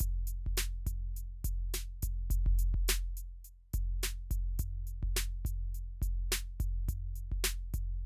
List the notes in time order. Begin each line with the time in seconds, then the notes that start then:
0.00 closed hi-hat, kick
0.27 closed hi-hat
0.46 kick
0.57 snare, closed hi-hat
0.87 kick, closed hi-hat
1.16 closed hi-hat
1.44 kick, closed hi-hat
1.74 snare, closed hi-hat
2.02 kick, closed hi-hat
2.30 kick, closed hi-hat
2.46 kick
2.59 closed hi-hat
2.74 kick
2.81 kick
2.88 snare, closed hi-hat
3.17 closed hi-hat
3.44 closed hi-hat
3.73 kick, closed hi-hat
4.03 snare, closed hi-hat
4.31 kick, closed hi-hat
4.59 kick, closed hi-hat
4.87 closed hi-hat
5.03 kick
5.16 snare, closed hi-hat
5.45 kick, closed hi-hat
5.74 closed hi-hat
6.02 kick, closed hi-hat
6.32 snare, closed hi-hat
6.60 kick, closed hi-hat
6.89 kick, closed hi-hat
7.15 closed hi-hat
7.32 kick
7.44 snare, closed hi-hat
7.74 kick, closed hi-hat